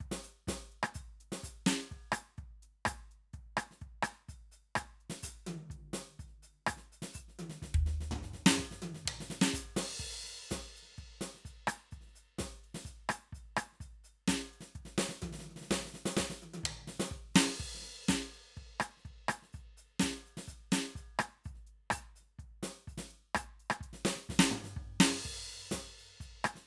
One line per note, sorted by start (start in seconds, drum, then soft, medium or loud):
0.01 kick soft
0.01 closed hi-hat soft
0.12 snare medium
0.23 open hi-hat medium
0.48 closed hi-hat medium
0.48 kick soft
0.48 snare medium
0.72 closed hi-hat soft
0.84 cross-stick medium
0.95 closed hi-hat medium
0.95 kick soft
1.21 open hi-hat soft
1.33 snare medium
1.44 closed hi-hat medium
1.44 kick soft
1.67 closed hi-hat loud
1.67 snare loud
1.92 kick soft
1.92 closed hi-hat soft
2.13 closed hi-hat loud
2.13 cross-stick medium
2.38 kick soft
2.38 closed hi-hat soft
2.63 closed hi-hat soft
2.86 closed hi-hat loud
2.86 kick soft
2.86 cross-stick medium
3.12 closed hi-hat soft
3.34 kick soft
3.34 closed hi-hat soft
3.58 closed hi-hat medium
3.58 cross-stick medium
3.72 snare soft
3.82 kick soft
3.82 closed hi-hat soft
4.03 closed hi-hat medium
4.03 cross-stick medium
4.29 closed hi-hat soft
4.29 kick soft
4.52 closed hi-hat soft
4.76 closed hi-hat medium
4.76 kick soft
4.76 cross-stick medium
5.01 open hi-hat soft
5.10 snare medium
5.23 closed hi-hat loud
5.23 kick soft
5.47 high tom loud
5.71 kick soft
5.71 closed hi-hat medium
5.94 closed hi-hat medium
5.94 snare medium
6.20 closed hi-hat soft
6.20 kick soft
6.28 snare soft
6.43 closed hi-hat soft
6.67 closed hi-hat medium
6.67 kick soft
6.67 cross-stick medium
6.78 snare soft
6.93 closed hi-hat soft
7.03 snare medium
7.14 open hi-hat medium
7.14 kick soft
7.29 snare soft
7.40 high tom loud
7.50 snare soft
7.63 kick soft
7.63 snare soft
7.75 mid tom loud
7.87 snare soft
8.01 snare soft
8.12 kick soft
8.12 floor tom loud
8.23 snare soft
8.34 snare soft
8.47 snare loud
8.58 kick soft
8.58 snare soft
8.58 hi-hat pedal soft
8.72 snare soft
8.83 high tom loud
8.95 snare soft
9.06 kick soft
9.06 mid tom loud
9.21 snare medium
9.31 snare medium
9.42 snare loud
9.54 closed hi-hat loud
9.54 kick soft
9.77 snare loud
9.77 crash loud
10.00 kick soft
10.00 closed hi-hat soft
10.05 snare soft
10.24 closed hi-hat medium
10.24 snare soft
10.29 snare soft
10.51 closed hi-hat loud
10.51 kick soft
10.51 snare medium
10.57 kick soft
10.76 closed hi-hat soft
10.83 snare soft
10.88 snare soft
10.91 snare soft
10.98 kick soft
10.98 closed hi-hat soft
11.22 closed hi-hat medium
11.22 snare medium
11.35 snare soft
11.46 closed hi-hat soft
11.46 kick soft
11.68 closed hi-hat loud
11.68 cross-stick medium
11.91 closed hi-hat soft
11.91 kick soft
12.02 snare soft
12.07 snare soft
12.16 closed hi-hat medium
12.39 closed hi-hat medium
12.39 kick soft
12.39 snare medium
12.64 open hi-hat soft
12.75 snare medium
12.86 closed hi-hat medium
12.86 kick soft
13.10 open hi-hat loud
13.10 cross-stick medium
13.33 closed hi-hat soft
13.33 kick soft
13.57 open hi-hat medium
13.57 cross-stick medium
13.73 snare soft
13.81 closed hi-hat soft
13.81 kick soft
13.81 snare soft
13.86 snare soft
13.88 snare soft
13.90 snare soft
14.04 closed hi-hat soft
14.28 open hi-hat medium
14.28 kick soft
14.28 snare medium
14.53 open hi-hat soft
14.61 snare soft
14.75 kick soft
14.75 closed hi-hat soft
14.86 snare soft
14.99 snare loud
15.10 snare medium
15.23 kick soft
15.23 high tom loud
15.33 snare medium
15.40 snare soft
15.44 high tom medium
15.51 high tom soft
15.57 snare soft
15.62 snare soft
15.67 kick soft
15.67 snare soft
15.72 snare loud
15.81 snare soft
15.86 snare soft
15.95 snare soft
16.06 snare loud
16.17 kick soft
16.17 snare loud
16.17 hi-hat pedal soft
16.31 snare medium
16.43 high tom medium
16.54 high tom loud
16.64 kick soft
16.64 mid tom loud
16.88 snare medium
17.00 snare loud
17.10 kick soft
17.10 hi-hat pedal soft
17.35 snare loud
17.35 crash loud
17.48 snare soft
17.60 closed hi-hat soft
17.60 kick soft
17.75 snare soft
17.80 snare soft
17.83 snare soft
17.83 closed hi-hat soft
18.09 closed hi-hat loud
18.09 kick soft
18.09 snare medium
18.34 open hi-hat soft
18.57 kick soft
18.57 closed hi-hat soft
18.81 closed hi-hat medium
18.81 cross-stick medium
18.98 snare soft
19.06 kick soft
19.06 closed hi-hat soft
19.29 open hi-hat medium
19.29 cross-stick medium
19.43 snare soft
19.53 open hi-hat soft
19.53 kick soft
19.53 snare soft
19.60 snare soft
19.78 closed hi-hat medium
20.00 closed hi-hat medium
20.00 kick soft
20.00 snare medium
20.11 snare soft
20.26 open hi-hat soft
20.38 snare medium
20.48 closed hi-hat medium
20.48 kick soft
20.72 open hi-hat medium
20.72 snare medium
20.96 closed hi-hat soft
20.96 kick soft
21.20 closed hi-hat medium
21.20 cross-stick medium
21.44 open hi-hat soft
21.44 kick soft
21.55 snare soft
21.67 open hi-hat soft
21.91 open hi-hat loud
21.91 kick soft
21.91 cross-stick medium
22.16 open hi-hat soft
22.21 snare soft
22.39 kick soft
22.39 closed hi-hat soft
22.63 open hi-hat medium
22.63 snare medium
22.88 open hi-hat soft
22.88 kick soft
22.98 snare medium
23.11 open hi-hat soft
23.35 open hi-hat medium
23.35 kick soft
23.35 cross-stick medium
23.60 open hi-hat soft
23.71 cross-stick medium
23.81 kick soft
23.81 closed hi-hat medium
23.94 snare soft
24.06 snare loud
24.17 snare soft
24.30 kick soft
24.30 snare medium
24.40 snare loud
24.51 floor tom loud
24.65 snare soft
24.77 kick soft
25.01 snare loud
25.01 crash loud
25.26 kick soft
25.48 closed hi-hat medium
25.71 closed hi-hat loud
25.71 kick soft
25.71 snare medium
25.98 open hi-hat soft
26.21 closed hi-hat soft
26.21 kick soft
26.45 open hi-hat medium
26.45 cross-stick medium
26.56 snare soft